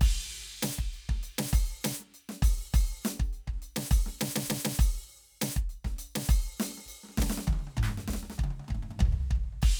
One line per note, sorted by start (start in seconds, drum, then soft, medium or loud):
0.01 kick loud
0.01 hi-hat pedal medium
0.01 crash loud
0.63 closed hi-hat loud
0.63 snare loud
0.79 kick medium
0.93 closed hi-hat soft
1.09 kick medium
1.09 snare soft
1.14 snare soft
1.17 snare soft
1.20 closed hi-hat medium
1.20 snare soft
1.39 snare loud
1.53 kick loud
1.53 percussion loud
1.84 snare loud
1.84 hi-hat pedal medium
1.84 percussion loud
2.00 snare soft
2.04 snare soft
2.08 snare soft
2.10 snare soft
2.14 closed hi-hat medium
2.29 snare medium
2.43 kick loud
2.43 percussion loud
2.74 kick loud
2.74 percussion loud
3.04 closed hi-hat loud
3.04 snare loud
3.04 hi-hat pedal soft
3.20 kick medium
3.25 snare soft
3.33 closed hi-hat soft
3.47 kick medium
3.47 snare soft
3.52 snare soft
3.56 snare soft
3.62 closed hi-hat medium
3.76 snare loud
3.91 kick loud
3.91 percussion loud
4.06 snare medium
4.19 snare loud
4.19 hi-hat pedal medium
4.36 snare loud
4.47 kick soft
4.47 snare loud
4.65 snare loud
4.79 kick loud
4.79 percussion loud
5.30 kick soft
5.41 snare loud
5.41 hi-hat pedal soft
5.41 percussion loud
5.56 kick medium
5.70 closed hi-hat soft
5.85 kick medium
5.85 snare medium
5.90 snare soft
5.95 snare soft
5.99 closed hi-hat loud
6.16 snare loud
6.29 kick loud
6.29 snare soft
6.29 percussion loud
6.60 snare loud
6.60 percussion loud
6.78 snare soft
6.86 kick soft
6.86 percussion medium
7.04 snare soft
7.09 snare medium
7.12 snare soft
7.18 kick medium
7.18 snare loud
7.22 snare loud
7.30 snare loud
7.38 snare loud
7.47 kick loud
7.47 high tom loud
7.53 high tom loud
7.59 high tom medium
7.67 high tom medium
7.72 high tom soft
7.77 kick medium
7.77 mid tom loud
7.83 percussion loud
7.89 snare medium
7.98 snare medium
8.02 snare medium
8.08 kick medium
8.08 snare loud
8.14 snare medium
8.23 snare medium
8.30 snare medium
8.38 kick medium
8.38 high tom medium
8.44 high tom loud
8.48 high tom medium
8.51 high tom medium
8.60 high tom medium
8.65 mid tom medium
8.65 high tom soft
8.71 kick medium
8.75 mid tom medium
8.79 mid tom soft
8.83 mid tom medium
8.91 mid tom medium
8.99 kick loud
8.99 floor tom loud
9.05 floor tom medium
9.09 floor tom soft
9.12 floor tom medium
9.21 floor tom soft
9.31 kick medium
9.31 floor tom soft
9.35 floor tom medium
9.44 floor tom soft
9.53 floor tom soft
9.60 kick soft
9.60 crash loud
9.63 kick loud